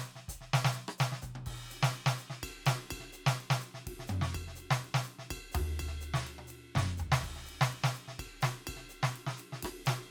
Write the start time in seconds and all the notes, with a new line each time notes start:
0.01 hi-hat pedal
0.06 closed hi-hat
0.16 snare
0.29 closed hi-hat, kick
0.35 kick
0.38 kick, snare
0.54 snare
0.65 snare
0.72 snare, hi-hat pedal
0.89 cross-stick
0.99 snare, hi-hat pedal
1.12 snare
1.22 kick, hi-hat pedal, high tom
1.32 kick, high tom
1.47 kick, crash
1.55 kick
1.71 hi-hat pedal, ride
1.83 snare
1.93 hi-hat pedal, ride
2.07 snare
2.18 hi-hat pedal
2.30 snare
2.43 kick, ride bell
2.52 kick
2.66 snare, hi-hat pedal, ride
2.77 snare
2.91 kick, ride bell
2.98 kick, snare
3.13 hi-hat pedal, ride
3.27 snare
3.41 ride
3.51 snare
3.61 hi-hat pedal, ride
3.75 snare
3.87 kick, ride
3.93 kick
3.96 kick, snare
4.08 hi-hat pedal, mid tom
4.22 snare
4.35 kick, ride bell
4.41 kick
4.44 kick, snare
4.56 hi-hat pedal
4.61 ride
4.71 snare
4.78 hi-hat pedal
4.85 ride
4.95 snare
5.04 hi-hat pedal
5.08 ride
5.19 snare
5.31 kick, ride bell
5.37 kick
5.41 kick
5.52 hi-hat pedal, ride, floor tom
5.80 kick, ride bell
5.87 kick, snare
5.90 kick
6.01 hi-hat pedal, ride
6.14 snare
6.27 ride
6.39 high tom
6.48 hi-hat pedal, ride
6.76 kick, snare, mid tom
6.83 kick
6.87 kick
6.98 kick, floor tom, hi-hat pedal
7.12 snare
7.19 snare
7.24 kick, crash
7.30 kick
7.36 snare
7.46 hi-hat pedal, ride
7.62 snare
7.73 ride
7.84 snare
7.94 hi-hat pedal, ride
8.08 snare
8.20 kick, ride bell
8.25 kick
8.28 kick
8.41 snare, hi-hat pedal, ride
8.68 kick, ride bell
8.75 kick, snare
8.78 kick
8.90 hi-hat pedal, ride
9.03 snare
9.16 ride
9.27 snare
9.37 hi-hat pedal, ride
9.53 snare
9.63 kick, cross-stick, ride
9.86 snare, hi-hat pedal, ride